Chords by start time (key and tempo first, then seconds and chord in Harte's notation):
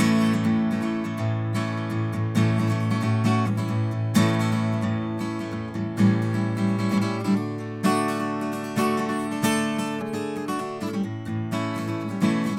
A major, 130 BPM
0.00 A:maj
7.38 D:maj/5
11.08 A:maj